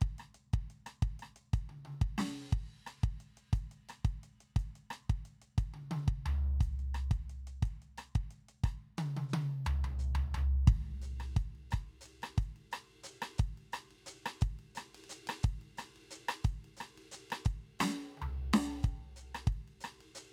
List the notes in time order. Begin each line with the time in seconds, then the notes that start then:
0.01 kick, closed hi-hat
0.18 cross-stick, closed hi-hat
0.34 closed hi-hat
0.53 kick, closed hi-hat
0.70 closed hi-hat
0.86 cross-stick, closed hi-hat
1.02 kick, closed hi-hat
1.19 cross-stick, closed hi-hat
1.36 closed hi-hat
1.53 closed hi-hat, kick
1.69 high tom
1.85 high tom
1.90 high tom
2.01 kick
2.18 snare, crash
2.52 kick
2.87 cross-stick, closed hi-hat
3.03 kick, closed hi-hat
3.20 closed hi-hat
3.37 closed hi-hat
3.53 kick, closed hi-hat
3.71 closed hi-hat
3.89 cross-stick, closed hi-hat
4.05 kick, closed hi-hat
4.23 closed hi-hat
4.40 closed hi-hat
4.56 kick, closed hi-hat
4.75 closed hi-hat
4.90 cross-stick, closed hi-hat
5.10 kick, closed hi-hat
5.25 closed hi-hat
5.42 closed hi-hat
5.58 kick, closed hi-hat
5.74 high tom
5.91 high tom
6.08 kick
6.26 floor tom
6.60 kick, closed hi-hat
6.79 closed hi-hat
6.94 cross-stick, closed hi-hat
7.11 kick, closed hi-hat
7.30 closed hi-hat
7.47 closed hi-hat
7.62 kick, closed hi-hat
7.82 closed hi-hat
7.98 cross-stick, closed hi-hat
8.15 kick, closed hi-hat
8.31 closed hi-hat
8.49 closed hi-hat
8.64 closed hi-hat, kick, cross-stick
8.97 hi-hat pedal, high tom
9.17 high tom
9.29 hi-hat pedal
9.33 high tom
9.65 floor tom, hi-hat pedal
9.84 floor tom
9.99 hi-hat pedal
10.15 floor tom
10.34 floor tom
10.67 kick, ride
11.02 hi-hat pedal, ride
11.20 cross-stick, ride
11.36 kick, hi-hat pedal, ride
11.55 ride
11.71 kick, cross-stick, hi-hat pedal, ride
12.01 hi-hat pedal
12.06 ride
12.22 cross-stick, ride
12.38 kick, hi-hat pedal, ride
12.56 ride
12.71 cross-stick, hi-hat pedal, ride
13.03 hi-hat pedal, ride
13.22 cross-stick, ride
13.38 kick, hi-hat pedal, ride
13.58 ride
13.72 cross-stick, hi-hat pedal, ride
13.91 ride
14.06 hi-hat pedal, ride
14.26 cross-stick, ride
14.41 kick, hi-hat pedal, ride
14.59 ride
14.75 cross-stick, hi-hat pedal, ride
14.95 ride
15.04 ride
15.09 hi-hat pedal, ride
15.27 cross-stick, ride
15.43 kick, hi-hat pedal, ride
15.61 ride
15.77 cross-stick, hi-hat pedal, ride
15.96 ride
16.11 hi-hat pedal, ride
16.28 cross-stick, ride
16.44 kick, hi-hat pedal, ride
16.64 ride
16.77 cross-stick, hi-hat pedal
16.81 ride
16.98 ride
17.11 hi-hat pedal, ride
17.30 cross-stick, ride
17.45 kick, hi-hat pedal, ride
17.79 snare, hi-hat pedal
18.17 high tom
18.22 floor tom
18.53 snare, ride
18.83 kick, hi-hat pedal
18.88 ride
19.16 hi-hat pedal, ride
19.35 cross-stick, ride
19.47 kick, hi-hat pedal
19.52 ride
19.68 ride
19.81 cross-stick, hi-hat pedal
19.85 ride
20.01 ride
20.15 hi-hat pedal, ride